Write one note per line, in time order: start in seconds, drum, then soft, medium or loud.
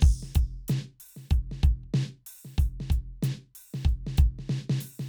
0.01 kick loud
0.01 crash medium
0.06 hi-hat pedal soft
0.23 snare soft
0.35 closed hi-hat loud
0.35 kick loud
0.68 closed hi-hat loud
0.68 snare loud
1.00 open hi-hat medium
1.09 open hi-hat soft
1.17 snare soft
1.31 kick medium
1.31 open hi-hat soft
1.52 snare medium
1.64 kick loud
1.64 closed hi-hat soft
1.84 kick soft
1.94 snare loud
2.27 open hi-hat medium
2.45 snare soft
2.58 kick medium
2.58 open hi-hat medium
2.81 snare medium
2.90 kick medium
2.90 closed hi-hat medium
3.23 closed hi-hat medium
3.23 snare loud
3.32 snare soft
3.55 open hi-hat medium
3.74 snare medium
3.85 kick medium
3.85 closed hi-hat soft
4.07 snare medium
4.18 closed hi-hat medium
4.18 kick loud
4.39 snare soft
4.50 snare loud
4.70 snare loud
4.81 open hi-hat medium
5.00 snare medium